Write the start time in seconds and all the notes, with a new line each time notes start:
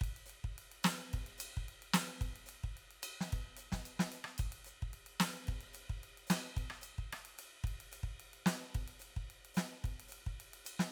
0.01 kick, ride
0.07 kick
0.16 ride
0.26 hi-hat pedal, ride
0.44 kick
0.58 ride
0.72 ride
0.83 snare, hi-hat pedal, ride
1.13 kick, ride
1.26 ride
1.38 hi-hat pedal, ride bell
1.57 kick, snare
1.62 snare
1.69 ride
1.82 ride
1.94 snare, hi-hat pedal, ride bell
2.21 kick, ride
2.36 ride
2.46 hi-hat pedal, ride
2.64 kick
2.74 snare, ride
2.91 ride
3.02 hi-hat pedal, ride bell
3.21 snare
3.32 kick, ride
3.57 hi-hat pedal, ride
3.72 kick, snare
3.85 ride bell
3.99 snare
4.12 hi-hat pedal, ride
4.24 cross-stick
4.38 kick, ride bell
4.45 kick
4.52 ride
4.65 hi-hat pedal, ride
4.82 kick
4.92 snare, ride
5.06 ride
5.20 snare, hi-hat pedal, ride
5.47 kick, snare, ride
5.61 snare, ride
5.70 snare, hi-hat pedal
5.75 ride
5.90 kick
6.03 ride
6.17 ride
6.27 snare, hi-hat pedal, ride bell
6.57 kick, ride
6.62 kick
6.70 cross-stick
6.81 hi-hat pedal, ride bell
6.98 kick
7.13 cross-stick, ride
7.25 ride
7.38 hi-hat pedal, ride
7.64 kick, ride
7.80 ride
7.92 hi-hat pedal, ride
8.03 kick
8.20 ride
8.33 ride
8.46 snare, hi-hat pedal, ride
8.70 snare
8.75 kick, ride
8.81 kick
8.88 ride
8.99 hi-hat pedal, ride
9.16 kick
9.30 ride
9.45 ride
9.54 snare, hi-hat pedal, ride
9.84 kick, snare, ride
9.94 snare
9.98 snare, ride
10.08 hi-hat pedal, ride
10.26 kick
10.40 ride
10.54 ride
10.65 hi-hat pedal, ride bell
10.79 snare